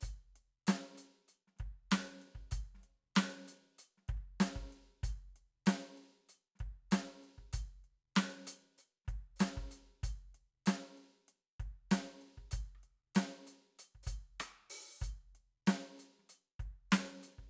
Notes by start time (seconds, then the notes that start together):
0.01 closed hi-hat, kick, hi-hat pedal
0.36 closed hi-hat
0.67 closed hi-hat, snare
0.95 closed hi-hat, snare
1.28 closed hi-hat
1.48 snare
1.57 kick, snare, closed hi-hat
1.91 closed hi-hat, snare
2.22 closed hi-hat
2.35 kick
2.51 closed hi-hat, kick
2.75 snare
2.78 snare
2.83 snare, closed hi-hat
3.16 closed hi-hat, snare
3.48 closed hi-hat
3.79 closed hi-hat
3.98 snare
4.02 snare
4.08 kick, closed hi-hat
4.17 kick
4.40 closed hi-hat, snare
4.56 kick
4.73 closed hi-hat
5.04 closed hi-hat, kick
5.09 kick
5.12 kick
5.36 closed hi-hat
5.66 closed hi-hat, snare
5.98 closed hi-hat
6.29 closed hi-hat
6.56 snare, closed hi-hat
6.60 kick
6.92 closed hi-hat, snare
7.24 closed hi-hat
7.38 kick
7.53 closed hi-hat, kick
7.63 kick
7.84 closed hi-hat
8.16 closed hi-hat, snare
8.47 open hi-hat
8.78 hi-hat pedal
9.05 kick, snare
9.09 closed hi-hat
9.36 closed hi-hat, hi-hat pedal
9.41 snare
9.57 kick, snare
9.71 closed hi-hat
10.04 closed hi-hat, kick
10.35 closed hi-hat
10.66 closed hi-hat, snare
10.98 closed hi-hat
11.29 closed hi-hat
11.60 kick, closed hi-hat
11.91 closed hi-hat, snare
12.21 closed hi-hat
12.38 kick
12.51 closed hi-hat, kick
12.75 cross-stick
12.83 closed hi-hat
13.15 closed hi-hat, snare
13.47 closed hi-hat
13.79 closed hi-hat
13.95 kick
14.03 closed hi-hat, kick, hi-hat pedal
14.40 closed hi-hat, cross-stick
14.70 open hi-hat
15.01 closed hi-hat, kick, hi-hat pedal
15.35 closed hi-hat
15.67 open hi-hat, snare
15.99 closed hi-hat
16.19 snare
16.23 snare
16.26 closed hi-hat, snare
16.60 kick, closed hi-hat
16.91 closed hi-hat, snare, hi-hat pedal
17.23 closed hi-hat
17.39 kick
17.43 snare